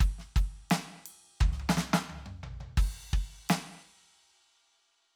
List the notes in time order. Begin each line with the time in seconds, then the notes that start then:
0.01 kick, ride
0.19 snare
0.36 kick, ride
0.71 snare, ride
1.06 ride
1.41 kick, mid tom
1.52 snare
1.60 mid tom
1.69 snare
1.78 snare
1.94 snare
2.10 mid tom
2.26 high tom
2.44 floor tom
2.61 floor tom
2.78 kick, crash
3.13 kick
3.50 snare, ride